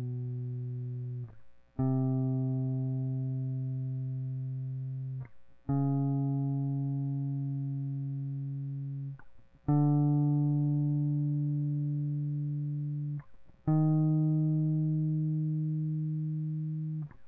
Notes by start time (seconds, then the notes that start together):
1.81 C3
5.71 C#3
9.70 D3
13.69 D#3